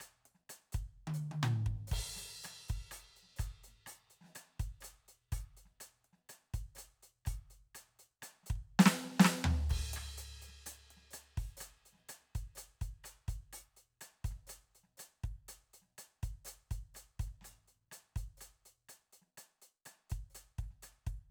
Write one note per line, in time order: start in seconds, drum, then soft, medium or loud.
0.01 closed hi-hat medium
0.01 cross-stick soft
0.26 closed hi-hat soft
0.35 snare soft
0.50 closed hi-hat medium
0.50 cross-stick soft
0.73 closed hi-hat medium
0.73 kick soft
1.08 high tom medium
1.15 hi-hat pedal medium
1.32 high tom medium
1.44 hi-hat pedal medium
1.44 mid tom loud
1.67 kick soft
1.88 hi-hat pedal medium
1.92 kick soft
1.92 crash medium
1.99 kick soft
2.01 kick soft
2.17 closed hi-hat medium
2.17 snare soft
2.44 open hi-hat medium
2.44 cross-stick soft
2.44 snare soft
2.69 closed hi-hat soft
2.69 kick soft
2.77 snare soft
2.92 open hi-hat medium
2.92 cross-stick soft
3.17 closed hi-hat soft
3.23 snare soft
3.25 snare soft
3.37 closed hi-hat medium
3.37 kick soft
3.37 cross-stick soft
3.37 hi-hat pedal soft
3.64 closed hi-hat soft
3.68 mid tom soft
3.87 open hi-hat medium
3.87 cross-stick soft
4.11 closed hi-hat soft
4.22 snare soft
4.23 snare soft
4.36 closed hi-hat medium
4.36 cross-stick soft
4.60 closed hi-hat soft
4.60 kick soft
4.81 closed hi-hat medium
4.81 cross-stick soft
4.81 hi-hat pedal soft
5.09 closed hi-hat soft
5.33 open hi-hat medium
5.33 kick soft
5.33 cross-stick soft
5.58 closed hi-hat soft
5.66 snare soft
5.81 closed hi-hat medium
5.81 cross-stick soft
6.05 closed hi-hat soft
6.14 snare soft
6.30 closed hi-hat medium
6.30 cross-stick soft
6.55 closed hi-hat soft
6.55 kick soft
6.76 closed hi-hat medium
6.76 cross-stick soft
6.76 hi-hat pedal medium
7.03 closed hi-hat soft
7.26 open hi-hat medium
7.26 kick soft
7.26 cross-stick soft
7.51 closed hi-hat soft
7.76 closed hi-hat medium
7.76 cross-stick soft
8.00 closed hi-hat soft
8.22 closed hi-hat medium
8.22 cross-stick soft
8.22 snare soft
8.44 closed hi-hat medium
8.44 snare soft
8.51 kick soft
8.56 kick soft
8.80 snare loud
8.87 snare loud
9.20 snare loud
9.25 snare loud
9.45 floor tom loud
9.69 kick soft
9.69 hi-hat pedal soft
9.69 crash medium
9.94 cross-stick medium
9.94 closed hi-hat medium
9.98 cross-stick soft
10.18 closed hi-hat medium
10.42 closed hi-hat soft
10.49 snare soft
10.67 closed hi-hat loud
10.67 cross-stick soft
10.91 closed hi-hat soft
10.97 snare soft
11.11 closed hi-hat medium
11.11 cross-stick soft
11.11 hi-hat pedal soft
11.38 open hi-hat soft
11.38 kick soft
11.58 closed hi-hat medium
11.58 cross-stick soft
11.58 snare soft
11.58 hi-hat pedal medium
11.86 closed hi-hat soft
11.93 snare soft
12.09 closed hi-hat medium
12.09 cross-stick soft
12.09 snare soft
12.36 closed hi-hat soft
12.36 kick soft
12.56 closed hi-hat medium
12.56 cross-stick soft
12.56 hi-hat pedal soft
12.82 closed hi-hat soft
12.82 kick soft
13.04 closed hi-hat medium
13.04 cross-stick soft
13.04 hi-hat pedal soft
13.29 closed hi-hat soft
13.29 kick soft
13.54 open hi-hat medium
13.54 cross-stick soft
13.77 closed hi-hat soft
14.02 closed hi-hat medium
14.02 cross-stick soft
14.25 closed hi-hat soft
14.25 kick soft
14.31 snare soft
14.48 closed hi-hat medium
14.48 cross-stick soft
14.48 hi-hat pedal soft
14.76 closed hi-hat soft
14.84 snare soft
14.98 closed hi-hat medium
14.98 cross-stick soft
14.98 hi-hat pedal soft
15.24 kick soft
15.24 closed hi-hat soft
15.49 open hi-hat medium
15.49 cross-stick soft
15.74 closed hi-hat soft
15.82 snare soft
15.85 snare soft
15.99 closed hi-hat medium
15.99 cross-stick soft
16.24 closed hi-hat soft
16.24 kick soft
16.33 snare soft
16.46 closed hi-hat medium
16.46 cross-stick soft
16.46 hi-hat pedal medium
16.72 closed hi-hat soft
16.72 kick soft
16.95 closed hi-hat medium
16.95 cross-stick soft
16.95 hi-hat pedal soft
17.20 closed hi-hat soft
17.20 kick soft
17.27 snare soft
17.42 open hi-hat medium
17.42 cross-stick soft
17.42 snare soft
17.42 hi-hat pedal soft
17.42 mid tom soft
17.68 closed hi-hat soft
17.92 closed hi-hat medium
17.92 cross-stick soft
17.92 snare soft
18.17 closed hi-hat soft
18.17 kick soft
18.38 closed hi-hat medium
18.38 cross-stick soft
18.38 hi-hat pedal soft
18.66 closed hi-hat soft
18.90 closed hi-hat medium
18.90 cross-stick soft
19.13 closed hi-hat soft
19.22 snare soft
19.38 closed hi-hat medium
19.38 cross-stick soft
19.63 closed hi-hat soft
19.86 closed hi-hat medium
19.86 cross-stick soft
20.11 closed hi-hat soft
20.11 kick soft
20.31 hi-hat pedal soft
20.36 closed hi-hat medium
20.36 cross-stick soft
20.59 kick soft
20.59 snare soft
20.59 closed hi-hat soft
20.71 snare soft
20.83 closed hi-hat medium
20.83 cross-stick soft
21.07 kick soft
21.07 closed hi-hat soft